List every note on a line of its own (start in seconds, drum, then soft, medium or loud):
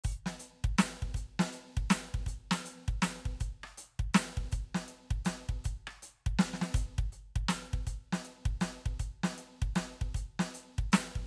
0.05 open hi-hat medium
0.05 kick medium
0.26 snare medium
0.40 closed hi-hat medium
0.64 kick medium
0.78 closed hi-hat loud
0.78 snare loud
1.02 kick soft
1.15 closed hi-hat medium
1.15 kick soft
1.40 snare loud
1.53 closed hi-hat medium
1.77 kick medium
1.90 closed hi-hat loud
1.90 snare loud
2.14 kick medium
2.27 closed hi-hat medium
2.27 kick soft
2.51 snare loud
2.66 closed hi-hat medium
2.88 kick medium
3.02 closed hi-hat medium
3.02 snare loud
3.26 kick soft
3.40 closed hi-hat medium
3.40 kick soft
3.64 cross-stick medium
3.78 closed hi-hat loud
3.99 kick medium
4.14 closed hi-hat medium
4.14 snare loud
4.37 kick soft
4.52 closed hi-hat medium
4.52 kick medium
4.75 snare medium
4.88 closed hi-hat medium
5.11 kick medium
5.25 closed hi-hat loud
5.25 snare medium
5.49 kick medium
5.65 closed hi-hat medium
5.65 kick medium
5.87 cross-stick medium
6.03 closed hi-hat medium
6.26 kick medium
6.39 snare loud
6.54 snare medium
6.62 snare medium
6.74 closed hi-hat loud
6.74 kick medium
6.98 kick medium
7.12 closed hi-hat medium
7.36 kick medium
7.49 closed hi-hat medium
7.49 snare loud
7.73 kick medium
7.87 closed hi-hat medium
7.87 kick soft
8.13 snare medium
8.25 closed hi-hat medium
8.46 kick medium
8.61 closed hi-hat medium
8.61 snare medium
8.86 kick medium
8.90 snare soft
9.00 closed hi-hat medium
9.00 kick soft
9.24 snare medium
9.33 snare soft
9.38 closed hi-hat medium
9.62 kick medium
9.76 snare medium
9.76 closed hi-hat medium
10.01 kick medium
10.15 closed hi-hat medium
10.15 kick soft
10.40 snare medium
10.54 closed hi-hat medium
10.78 kick medium
10.92 closed hi-hat loud
10.92 snare loud
11.16 kick soft